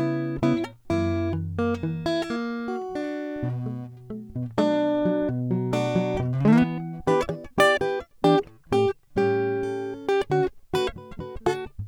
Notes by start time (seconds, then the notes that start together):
0.00 C#3 G3 B3 E4
0.44 C#3 G3 B3 E4
0.91 F#2 E3 A#3 E4
1.34 E3
1.60 A#3
1.85 E3
2.07 E4
2.31 A#3
2.69 F#4
2.97 D4
3.45 B2
3.68 A3
4.12 A3
4.37 B2
4.59 B2 F#3 A3 D4 F#4
5.07 F#3
5.31 B2
5.52 F#3
5.74 A3 D4 F#4
5.97 F#3
6.21 C3
6.52 E3 B3
7.09 E3 B3 D4 G4 B4
7.31 E3 B3 D4 G4
7.36 D5
7.60 E3 C4 D4 G4 D5
7.83 E3 C4 D4 G4 B4
8.25 E3 B3 D4 G4
8.73 A2 G3 C4 G4
9.18 A2 G3 C#4 G4
9.65 A4
10.10 G4
10.32 D3 A3 C#4 F#4
10.75 C#3 A3 C#4 F#4 B4
10.98 C#3 A3 F#4 B4
11.21 C#3 A3 C4 F#4 B4
11.47 D3 A3 F#4 A4